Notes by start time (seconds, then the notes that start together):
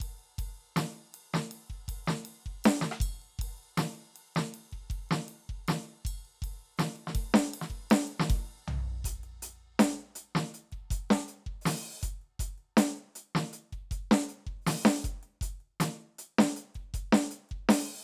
0.01 kick, ride
0.20 ride
0.39 kick, ride
0.58 ride
0.77 snare, ride
0.96 ride
1.13 hi-hat pedal, ride
1.34 snare, ride
1.52 ride
1.70 kick, ride
1.89 kick, ride
2.08 snare, ride
2.26 ride
2.44 kick, ride
2.65 snare, ride bell
2.82 snare
2.92 cross-stick
3.01 kick, ride bell
3.23 ride
3.40 kick, ride
3.58 ride
3.78 snare, ride
3.96 ride
4.15 hi-hat pedal, ride
4.36 snare, ride
4.55 ride
4.73 kick, ride
4.91 kick, ride
5.10 snare, ride
5.29 ride
5.48 kick, ride
5.69 snare, ride
5.85 ride
6.06 kick, ride bell
6.26 ride
6.43 kick, ride
6.64 ride
6.78 snare, hi-hat pedal, ride
6.97 ride
7.08 snare
7.15 kick, ride
7.35 snare
7.54 ride
7.62 snare
7.71 kick, ride
7.91 snare, ride
8.08 ride
8.20 snare
8.30 kick, ride
8.68 floor tom
9.05 closed hi-hat, kick
9.24 closed hi-hat
9.43 closed hi-hat
9.80 closed hi-hat, snare
9.97 closed hi-hat
10.16 closed hi-hat
10.36 snare, closed hi-hat
10.55 closed hi-hat
10.73 kick, closed hi-hat
10.91 closed hi-hat, kick
11.10 snare, closed hi-hat
11.29 closed hi-hat
11.47 kick
11.62 hi-hat pedal
11.66 open hi-hat, snare
12.02 closed hi-hat, kick, hi-hat pedal
12.22 closed hi-hat
12.40 closed hi-hat, kick
12.58 closed hi-hat
12.78 closed hi-hat, snare
12.97 closed hi-hat
13.16 closed hi-hat
13.36 snare, closed hi-hat
13.54 closed hi-hat
13.73 kick, closed hi-hat
13.92 closed hi-hat, kick
14.12 snare
14.29 closed hi-hat
14.47 kick, closed hi-hat
14.62 hi-hat pedal
14.67 open hi-hat, snare
14.86 snare
15.03 closed hi-hat, kick, hi-hat pedal
15.24 closed hi-hat
15.42 closed hi-hat, kick
15.61 closed hi-hat
15.81 closed hi-hat, snare
16.19 closed hi-hat
16.39 snare, closed hi-hat
16.43 snare
16.57 closed hi-hat
16.75 kick, closed hi-hat
16.95 closed hi-hat, kick
17.13 snare
17.31 closed hi-hat
17.50 kick, closed hi-hat
17.70 open hi-hat, snare